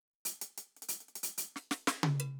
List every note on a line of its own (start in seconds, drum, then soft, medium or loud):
0.25 closed hi-hat loud
0.41 closed hi-hat loud
0.58 closed hi-hat medium
0.76 closed hi-hat soft
0.82 closed hi-hat medium
0.89 closed hi-hat loud
1.00 closed hi-hat medium
1.08 closed hi-hat soft
1.15 closed hi-hat medium
1.23 closed hi-hat loud
1.38 closed hi-hat loud
1.56 snare medium
1.71 snare loud
1.87 snare loud
2.03 high tom loud
2.20 percussion loud